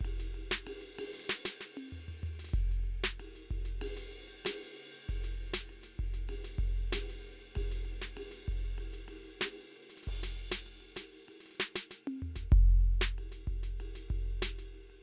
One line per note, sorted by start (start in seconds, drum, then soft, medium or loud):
0.01 kick medium
0.01 hi-hat pedal medium
0.01 ride medium
0.19 snare soft
0.32 hi-hat pedal soft
0.32 ride medium
0.51 snare loud
0.62 hi-hat pedal medium
0.67 ride loud
0.81 snare soft
0.96 hi-hat pedal soft
0.96 ride loud
1.13 snare soft
1.19 snare soft
1.24 snare soft
1.24 hi-hat pedal medium
1.29 snare loud
1.45 snare loud
1.57 snare medium
1.57 hi-hat pedal medium
1.77 high tom medium
1.89 floor tom soft
1.89 hi-hat pedal medium
2.08 floor tom medium
2.20 floor tom medium
2.20 hi-hat pedal medium
2.39 snare soft
2.44 snare soft
2.48 snare soft
2.53 kick medium
2.53 snare soft
2.53 hi-hat pedal medium
2.53 crash medium
2.71 snare soft
2.83 ride soft
3.04 snare loud
3.14 hi-hat pedal medium
3.19 ride medium
3.35 snare soft
3.50 kick medium
3.50 ride soft
3.65 snare soft
3.78 hi-hat pedal medium
3.78 ride loud
3.96 snare soft
4.11 ride soft
4.27 ride soft
4.43 snare loud
4.43 hi-hat pedal medium
4.43 ride loud
4.63 snare soft
4.94 ride soft
5.07 kick medium
5.07 hi-hat pedal medium
5.07 ride medium
5.24 snare soft
5.38 ride soft
5.53 snare loud
5.68 hi-hat pedal medium
5.68 ride medium
5.83 snare soft
5.99 kick medium
5.99 ride soft
6.13 snare soft
6.27 hi-hat pedal medium
6.27 ride medium
6.44 snare soft
6.58 kick medium
6.58 ride soft
6.90 snare loud
6.90 hi-hat pedal medium
6.90 ride loud
7.09 snare soft
7.24 ride soft
7.39 ride soft
7.54 kick medium
7.54 hi-hat pedal medium
7.54 ride loud
7.71 snare soft
7.85 ride soft
8.01 snare medium
8.17 hi-hat pedal medium
8.17 ride loud
8.31 snare soft
8.47 kick medium
8.47 ride soft
8.65 snare soft
8.77 hi-hat pedal medium
8.77 ride medium
8.93 snare soft
9.07 hi-hat pedal medium
9.07 ride medium
9.39 snare loud
9.39 hi-hat pedal medium
9.39 ride loud
9.60 snare soft
9.76 ride soft
9.89 snare soft
9.97 snare soft
10.03 snare soft
10.03 hi-hat pedal medium
10.07 kick soft
10.07 ride medium
10.23 snare medium
10.36 ride soft
10.51 snare loud
10.62 hi-hat pedal medium
10.66 ride soft
10.80 ride soft
10.96 snare medium
10.96 ride medium
11.28 hi-hat pedal medium
11.28 ride medium
11.40 snare soft
11.46 snare soft
11.50 snare soft
11.55 snare soft
11.60 snare loud
11.75 snare loud
11.90 snare medium
11.90 hi-hat pedal medium
12.07 high tom loud
12.22 floor tom medium
12.35 kick soft
12.35 snare medium
12.52 kick loud
12.52 hi-hat pedal medium
12.52 crash medium
12.70 snare soft
12.81 ride soft
13.01 snare loud
13.13 hi-hat pedal medium
13.18 ride medium
13.32 snare soft
13.47 kick medium
13.47 ride soft
13.63 snare soft
13.78 hi-hat pedal medium
13.78 ride medium
13.95 snare soft
14.08 kick medium
14.08 ride soft
14.26 ride soft
14.42 snare loud
14.42 hi-hat pedal medium
14.42 ride medium
14.58 snare soft
14.74 ride soft
14.90 ride soft